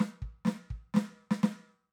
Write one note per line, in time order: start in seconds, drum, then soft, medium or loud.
0.01 snare loud
0.22 kick soft
0.46 snare medium
0.48 snare loud
0.71 kick soft
0.95 snare medium
0.97 snare loud
1.31 snare loud
1.44 snare loud